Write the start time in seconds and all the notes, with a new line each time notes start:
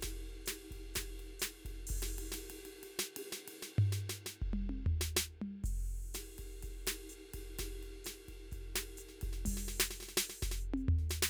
0.01 kick, snare, hi-hat pedal, ride
0.09 kick
0.46 snare, hi-hat pedal, ride
0.71 kick, ride
0.76 kick
0.94 kick, snare, hi-hat pedal, ride
1.02 kick
1.19 ride
1.40 snare, hi-hat pedal, ride
1.60 snare
1.65 kick, ride
1.71 kick
1.87 kick, hi-hat pedal, ride
1.96 kick
2.02 snare, ride
2.18 ride
2.32 snare, ride
2.50 ride
2.65 ride
2.83 ride
2.99 snare
3.16 ride
3.32 snare
3.48 ride
3.63 snare
3.78 floor tom
3.92 snare
4.09 snare
4.26 snare
4.42 kick
4.49 kick
4.53 mid tom
4.69 high tom
4.86 floor tom
5.01 snare
5.17 snare
5.42 mid tom
5.64 kick, hi-hat pedal, crash
6.14 snare, hi-hat pedal, ride
6.38 kick, ride
6.44 kick
6.63 kick, hi-hat pedal, ride
6.69 kick
6.87 snare, ride
7.09 hi-hat pedal
7.34 kick, ride
7.39 kick
7.58 kick, snare, hi-hat pedal, ride
7.65 kick
7.83 ride
8.05 snare, hi-hat pedal, ride
8.28 kick, ride
8.52 kick, hi-hat pedal, ride
8.76 snare, ride
8.97 hi-hat pedal, ride
9.09 snare
9.21 kick, ride
9.29 kick, snare
9.45 kick, hi-hat pedal, mid tom
9.54 kick, snare
9.68 snare
9.80 snare
9.91 snare
10.00 snare
10.03 snare
10.09 snare
10.17 snare, hi-hat pedal
10.30 snare
10.42 kick, snare
10.51 snare
10.62 hi-hat pedal
10.74 hi-hat pedal, high tom
10.88 floor tom
10.99 snare
11.10 snare, hi-hat pedal
11.23 snare